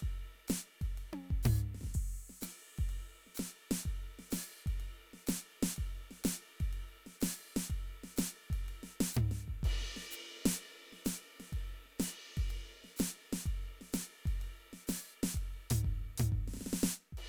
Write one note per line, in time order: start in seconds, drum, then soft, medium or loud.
0.01 kick soft
0.01 ride medium
0.35 snare soft
0.48 snare medium
0.48 hi-hat pedal loud
0.48 ride loud
0.82 kick soft
0.82 ride medium
0.98 ride medium
1.14 high tom medium
1.31 kick soft
1.43 floor tom loud
1.43 hi-hat pedal loud
1.75 snare soft
1.81 kick soft
1.81 snare soft
1.84 snare soft
1.87 snare soft
1.91 snare soft
1.91 crash medium
1.96 kick soft
2.30 snare soft
2.42 snare soft
2.42 hi-hat pedal loud
2.42 ride loud
2.79 kick soft
2.79 ride medium
2.89 hi-hat pedal soft
2.89 ride medium
3.27 snare soft
3.35 hi-hat pedal loud
3.35 ride loud
3.40 snare medium
3.71 snare medium
3.71 ride medium
3.84 kick soft
3.84 ride medium
4.19 snare soft
4.31 snare medium
4.31 hi-hat pedal loud
4.31 ride loud
4.67 kick soft
4.67 ride medium
4.80 ride medium
5.14 snare soft
5.27 snare medium
5.27 hi-hat pedal loud
5.27 ride loud
5.63 snare medium
5.63 ride medium
5.77 kick soft
5.77 ride medium
6.11 snare soft
6.25 snare medium
6.25 hi-hat pedal loud
6.25 ride loud
6.61 kick soft
6.61 ride medium
6.73 ride medium
7.07 snare soft
7.21 snare medium
7.21 hi-hat pedal loud
7.21 ride loud
7.57 snare medium
7.57 ride medium
7.70 kick soft
7.70 ride medium
8.04 snare soft
8.17 snare medium
8.17 hi-hat pedal loud
8.17 ride loud
8.51 kick soft
8.51 ride medium
8.69 ride medium
8.84 snare soft
9.01 snare medium
9.12 hi-hat pedal loud
9.17 floor tom loud
9.32 snare soft
9.48 kick soft
9.64 kick medium
9.64 ride medium
9.82 snare soft
9.97 snare soft
10.11 hi-hat pedal loud
10.11 ride medium
10.46 snare loud
10.46 ride loud
10.58 ride soft
10.93 snare soft
11.05 snare medium
11.05 hi-hat pedal loud
11.05 ride loud
11.40 snare soft
11.40 ride medium
11.50 kick soft
11.50 hi-hat pedal soft
11.50 ride medium
11.86 snare soft
12.00 snare medium
12.00 hi-hat pedal medium
12.00 ride medium
12.38 kick soft
12.38 ride medium
12.42 snare soft
12.47 hi-hat pedal soft
12.47 ride medium
12.85 snare soft
12.97 snare medium
12.97 hi-hat pedal medium
12.97 ride loud
13.33 snare medium
13.33 ride medium
13.46 kick soft
13.46 ride medium
13.82 snare soft
13.93 snare medium
13.93 hi-hat pedal loud
13.93 ride loud
14.26 kick soft
14.26 ride medium
14.38 hi-hat pedal soft
14.38 ride medium
14.73 snare soft
14.88 snare medium
14.88 hi-hat pedal loud
14.88 ride loud
15.24 snare medium
15.24 ride medium
15.35 kick soft
15.35 ride medium
15.71 open hi-hat loud
15.71 floor tom loud
15.85 kick soft
16.18 open hi-hat loud
16.18 floor tom loud
16.33 kick soft
16.48 snare soft
16.54 snare soft
16.57 snare soft
16.61 snare soft
16.67 snare soft
16.73 snare medium
16.80 hi-hat pedal medium
16.84 snare medium
17.13 kick soft
17.18 ride medium